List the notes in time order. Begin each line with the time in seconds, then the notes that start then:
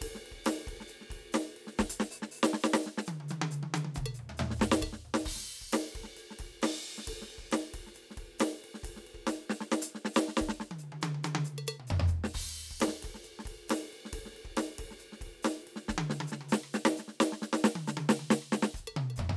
0.01 kick, hi-hat pedal, ride
0.08 kick
0.15 snare
0.26 ride
0.32 kick
0.37 kick
0.44 snare, hi-hat pedal, ride
0.67 kick, ride
0.74 kick
0.80 snare
0.88 hi-hat pedal, ride
1.01 snare
1.10 kick, ride
1.16 kick
1.32 snare, hi-hat pedal, ride
1.56 ride
1.67 snare
1.77 kick, snare, hi-hat pedal
1.86 closed hi-hat, kick
2.00 snare
2.11 open hi-hat
2.15 hi-hat pedal
2.22 snare
2.31 open hi-hat
2.37 closed hi-hat, hi-hat pedal
2.43 snare
2.53 snare
2.60 snare, hi-hat pedal
2.74 snare
2.82 snare, hi-hat pedal
2.98 snare
3.06 hi-hat pedal, high tom
3.20 high tom
3.28 hi-hat pedal, high tom
3.42 high tom
3.51 hi-hat pedal, high tom
3.63 high tom
3.74 hi-hat pedal, high tom
3.85 high tom
3.94 kick, hi-hat pedal, mid tom
4.04 kick, percussion
4.14 hi-hat pedal
4.19 floor tom
4.29 floor tom
4.37 hi-hat pedal, floor tom
4.50 snare
4.56 kick, hi-hat pedal
4.61 snare
4.66 kick
4.72 snare
4.80 kick, hi-hat pedal, percussion
4.93 snare
5.05 mid tom
5.14 snare
5.24 kick, hi-hat pedal, crash
5.36 snare
5.39 snare
5.42 snare
5.61 kick
5.73 snare, hi-hat pedal, ride
5.95 kick, ride
6.01 kick, snare
6.17 hi-hat pedal, ride
6.31 snare
6.39 kick, ride
6.46 kick
6.62 snare, hi-hat pedal, ride
6.84 ride
6.98 snare
7.06 kick, hi-hat pedal, ride
7.14 kick
7.17 kick
7.22 snare
7.30 ride
7.38 kick
7.51 snare, hi-hat pedal, ride
7.74 kick, ride
7.80 kick
7.87 snare
7.94 hi-hat pedal, ride
8.11 snare
8.17 kick, ride
8.39 snare, hi-hat pedal, ride
8.64 ride
8.74 snare
8.83 kick, hi-hat pedal, ride
8.90 kick
8.96 snare
9.07 ride
9.14 kick
9.19 kick
9.27 snare, hi-hat pedal, ride
9.50 snare
9.61 snare
9.71 snare, hi-hat pedal
9.82 closed hi-hat
9.95 snare
10.05 snare
10.14 snare, hi-hat pedal
10.28 snare
10.37 snare
10.41 kick, hi-hat pedal
10.48 kick, snare
10.60 snare
10.71 high tom
10.79 hi-hat pedal
10.83 high tom
10.92 high tom
11.01 hi-hat pedal, high tom
11.15 high tom
11.24 hi-hat pedal, high tom
11.35 high tom
11.45 hi-hat pedal
11.58 percussion
11.67 hi-hat pedal
11.80 mid tom
11.87 kick, floor tom, hi-hat pedal
12.00 floor tom
12.08 kick, hi-hat pedal
12.17 kick
12.24 snare
12.34 kick, hi-hat pedal, crash
12.49 kick, cross-stick
12.71 kick
12.76 kick
12.80 snare, hi-hat pedal, ride
12.88 snare
13.03 kick, ride
13.10 kick
13.14 snare
13.23 hi-hat pedal, ride
13.39 snare
13.45 kick, ride
13.51 kick
13.68 snare, hi-hat pedal, ride
13.93 ride
14.05 snare
14.12 kick, hi-hat pedal, ride
14.19 kick
14.25 snare
14.33 snare, ride
14.45 kick
14.50 kick
14.57 snare, hi-hat pedal, ride
14.78 kick, ride
14.85 kick
14.91 snare
14.99 hi-hat pedal, ride
15.12 snare
15.21 kick, ride
15.27 kick
15.43 snare, hi-hat pedal, ride
15.67 ride
15.76 snare
15.88 kick, snare, hi-hat pedal
15.96 kick, high tom
16.10 snare
16.20 high tom
16.27 hi-hat pedal
16.32 snare
16.41 high tom
16.49 snare, hi-hat pedal
16.64 cross-stick
16.73 snare, hi-hat pedal
16.85 snare
16.97 snare, hi-hat pedal
17.08 snare
17.20 snare, hi-hat pedal
17.32 snare
17.42 snare, hi-hat pedal
17.53 snare
17.64 snare, hi-hat pedal
17.75 high tom
17.87 snare, hi-hat pedal
17.97 high tom
18.09 snare, hi-hat pedal
18.19 high tom
18.30 snare, hi-hat pedal
18.42 cross-stick
18.52 snare, hi-hat pedal
18.63 snare
18.74 kick, hi-hat pedal
18.83 kick
18.87 percussion
18.97 mid tom
19.10 percussion
19.16 kick, floor tom, hi-hat pedal
19.24 kick
19.30 floor tom